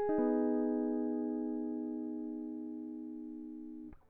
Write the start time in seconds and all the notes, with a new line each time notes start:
0.00 G#4
0.09 D#4
0.19 B3